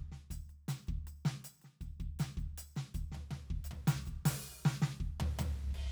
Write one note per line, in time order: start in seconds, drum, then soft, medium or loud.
0.13 snare soft
0.31 kick soft
0.31 percussion medium
0.50 percussion soft
0.69 snare medium
0.69 percussion medium
0.88 kick medium
0.88 percussion soft
1.08 percussion soft
1.26 snare medium
1.26 percussion soft
1.45 percussion medium
1.62 snare soft
1.62 percussion soft
1.82 kick soft
1.82 snare soft
1.82 percussion soft
2.01 kick soft
2.01 percussion soft
2.20 snare medium
2.20 percussion medium
2.38 kick soft
2.38 percussion soft
2.59 percussion medium
2.77 snare medium
2.77 percussion soft
2.95 kick soft
2.95 percussion soft
3.13 snare soft
3.13 floor tom soft
3.32 snare soft
3.32 floor tom medium
3.51 kick soft
3.65 percussion medium
3.72 floor tom medium
3.88 snare medium
3.88 percussion loud
4.07 kick soft
4.07 percussion soft
4.26 snare medium
4.26 percussion loud
4.66 snare medium
4.83 snare medium
5.01 kick medium
5.21 floor tom loud
5.40 floor tom loud
5.40 percussion medium
5.71 kick soft
5.71 ride medium